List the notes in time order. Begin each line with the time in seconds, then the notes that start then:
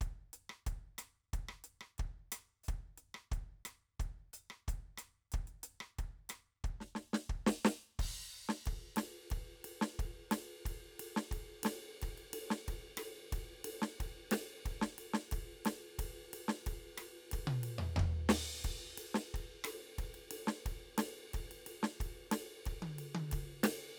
0.01 kick, closed hi-hat
0.33 closed hi-hat
0.50 cross-stick
0.67 kick, closed hi-hat
0.98 cross-stick, closed hi-hat
1.33 kick, closed hi-hat
1.49 cross-stick
1.64 closed hi-hat
1.81 cross-stick
1.98 kick, closed hi-hat
2.32 cross-stick, open hi-hat
2.64 hi-hat pedal
2.68 kick, closed hi-hat
2.98 closed hi-hat
3.15 cross-stick
3.32 kick, closed hi-hat
3.65 cross-stick, closed hi-hat
4.00 kick, closed hi-hat
4.33 closed hi-hat
4.50 cross-stick
4.68 kick, closed hi-hat
4.98 cross-stick, closed hi-hat
5.32 kick, closed hi-hat
5.47 closed hi-hat
5.63 closed hi-hat
5.81 cross-stick
5.99 kick, closed hi-hat
6.29 cross-stick, closed hi-hat
6.64 kick, closed hi-hat
6.81 snare
6.95 snare
7.13 snare
7.30 kick
7.47 snare
7.65 snare
7.99 kick, crash
8.40 kick
8.49 snare
8.66 kick, ride
8.96 snare, ride
9.31 kick, ride
9.65 ride
9.82 snare
9.99 kick, ride
10.31 snare, ride
10.66 kick, ride
11.00 ride
11.17 snare
11.31 kick, ride
11.63 snare, ride
12.02 kick, ride
12.18 ride
12.33 ride
12.51 snare
12.68 kick, ride
12.97 cross-stick, ride
13.32 kick, ride
13.65 ride
13.82 snare
14.00 kick, ride
14.31 snare, ride
14.66 kick, ride
14.82 snare
14.98 ride
15.14 snare
15.32 kick, ride
15.65 snare, ride
15.99 kick, ride
16.33 ride
16.48 snare
16.67 kick, ride
16.98 cross-stick, ride
17.32 kick, ride
17.47 mid tom
17.64 ride
17.79 floor tom
17.96 kick, floor tom
18.29 snare, ride
18.65 kick, ride
18.98 ride
19.15 snare
19.34 kick, ride
19.64 cross-stick, ride
19.98 kick, ride
20.14 ride
20.31 ride
20.47 snare
20.66 kick, ride
20.98 snare, ride
21.34 kick, ride
21.51 ride
21.67 ride
21.83 snare
22.00 kick, ride
22.32 snare, ride
22.66 kick, ride
22.82 high tom
22.99 ride
23.15 high tom
23.32 kick, ride
23.64 snare, ride